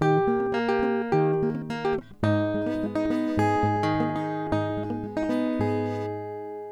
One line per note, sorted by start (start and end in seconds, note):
0.00 0.53 A#2
0.00 0.24 D#3
0.00 0.20 D#3
0.00 0.63 G4
0.29 0.50 A#3
0.56 1.36 A#3
0.70 1.07 G4
1.13 2.02 D#3
1.13 1.51 G4
1.45 1.67 A#3
1.52 1.80 G4
1.71 2.02 A#3
1.86 2.02 G4
2.25 3.28 G#2
2.25 2.92 D#4
2.56 2.78 G#3
2.68 3.08 B3
2.85 3.41 G#3
2.97 4.13 D#4
3.12 3.72 B3
3.39 3.59 G#2
3.39 5.52 G#4
3.65 4.50 G#2
3.84 4.74 D#3
4.17 4.50 D#4
4.53 5.50 G#2
4.53 4.84 D#4
4.79 5.00 G#3
4.84 5.12 D#4
5.06 5.62 G#3
5.18 6.72 D#4
5.31 5.55 B3
5.55 6.11 B3
5.61 6.72 G#2
5.61 6.72 G#4